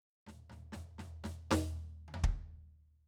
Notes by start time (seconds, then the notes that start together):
0.27 snare, floor tom
0.50 snare, floor tom
0.72 snare, floor tom
0.98 snare, floor tom
1.24 snare, floor tom
1.51 snare, floor tom
2.08 high tom
2.14 floor tom
2.24 kick